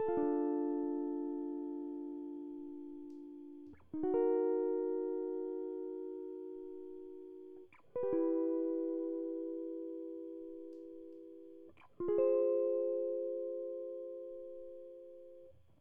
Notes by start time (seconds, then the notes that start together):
0.00 A4
0.09 F4
0.17 D4
3.94 D#4
4.04 F#4
4.14 A#4
7.96 B4
8.03 G4
8.13 E4
12.00 F4
12.09 G#4
12.18 C5